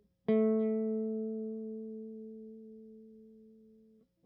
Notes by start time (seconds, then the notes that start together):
0.29 A3